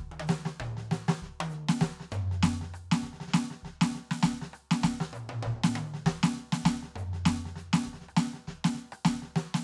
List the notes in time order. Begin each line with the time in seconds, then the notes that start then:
0.01 kick
0.07 kick
0.13 kick, high tom
0.21 high tom
0.28 snare, hi-hat pedal
0.46 snare
0.61 kick, mid tom
0.78 snare
0.92 snare, hi-hat pedal
1.09 snare
1.23 kick, snare
1.32 kick
1.41 high tom
1.51 snare, hi-hat pedal
1.70 snare
1.82 kick, snare
2.01 snare
2.12 floor tom, hi-hat pedal
2.32 snare
2.44 kick, snare
2.62 snare
2.75 cross-stick, hi-hat pedal
2.93 snare
3.04 kick, snare
3.14 snare
3.21 snare
3.29 snare
3.35 snare, hi-hat pedal
3.51 snare
3.64 kick, snare
3.82 snare
3.95 snare, hi-hat pedal
4.12 snare
4.24 kick, snare
4.43 snare
4.54 cross-stick, hi-hat pedal
4.72 snare
4.84 kick, snare
5.01 snare
5.14 cross-stick, hi-hat pedal, mid tom
5.30 mid tom
5.44 kick, mid tom
5.65 snare
5.76 hi-hat pedal, high tom
5.95 snare
6.07 kick, snare
6.24 snare
6.36 snare, hi-hat pedal
6.53 snare
6.65 kick, snare
6.84 snare
6.97 floor tom, hi-hat pedal
7.14 snare
7.27 kick, snare
7.46 snare
7.57 snare, hi-hat pedal
7.74 snare
7.85 kick, snare
7.94 snare
8.02 snare
8.10 cross-stick
8.18 snare, hi-hat pedal
8.34 snare
8.48 kick, snare
8.65 snare
8.76 snare, hi-hat pedal
8.93 cross-stick
9.06 kick, snare
9.23 snare
9.37 snare, hi-hat pedal
9.55 snare